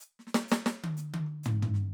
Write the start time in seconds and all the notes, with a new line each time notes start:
0.00 hi-hat pedal
0.19 snare
0.27 snare
0.34 snare
0.48 snare, hi-hat pedal
0.66 snare
0.84 high tom
0.97 snare, hi-hat pedal
1.14 high tom
1.26 cross-stick
1.43 floor tom, hi-hat pedal
1.62 floor tom
1.74 snare